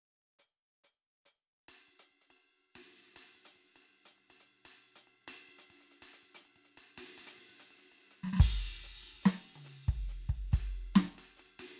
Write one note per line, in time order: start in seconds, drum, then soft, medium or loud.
0.39 hi-hat pedal medium
0.84 hi-hat pedal soft
1.26 hi-hat pedal medium
1.69 ride bell medium
1.77 closed hi-hat soft
1.89 ride soft
2.00 closed hi-hat medium
2.11 ride soft
2.22 closed hi-hat soft
2.31 ride bell medium
2.76 ride medium
3.17 ride bell medium
3.35 ride soft
3.46 closed hi-hat loud
3.56 ride soft
3.76 ride bell medium
3.85 closed hi-hat soft
4.06 closed hi-hat medium
4.19 ride bell soft
4.31 ride bell medium
4.41 closed hi-hat medium
4.58 closed hi-hat soft
4.66 ride bell medium
4.76 closed hi-hat soft
4.96 closed hi-hat loud
5.08 ride bell soft
5.15 closed hi-hat soft
5.28 ride bell loud
5.38 closed hi-hat soft
5.49 ride soft
5.59 closed hi-hat loud
5.71 ride medium
5.81 closed hi-hat soft
5.92 closed hi-hat soft
6.03 ride bell medium
6.14 closed hi-hat medium
6.23 ride soft
6.35 closed hi-hat loud
6.46 ride bell soft
6.56 ride medium
6.65 closed hi-hat soft
6.78 ride bell medium
6.98 ride loud
7.07 closed hi-hat soft
7.18 ride bell medium
7.27 closed hi-hat loud
7.39 ride soft
7.50 ride soft
7.60 closed hi-hat loud
7.71 ride bell medium
7.79 closed hi-hat soft
7.92 ride bell soft
8.01 closed hi-hat soft
8.11 closed hi-hat medium
8.24 snare soft
8.27 snare soft
8.33 snare medium
8.37 kick loud
8.37 snare medium
8.37 crash loud
8.84 hi-hat pedal medium
9.04 ride medium
9.23 snare loud
9.23 hi-hat pedal medium
9.56 high tom medium
9.65 hi-hat pedal medium
9.65 ride bell medium
9.89 kick medium
10.09 hi-hat pedal medium
10.09 ride soft
10.09 floor tom soft
10.29 kick medium
10.52 kick medium
10.52 hi-hat pedal medium
10.52 ride bell medium
10.76 ride soft
10.95 snare loud
10.95 hi-hat pedal medium
11.19 ride bell medium
11.37 hi-hat pedal medium
11.37 ride bell medium
11.60 ride loud
11.72 open hi-hat soft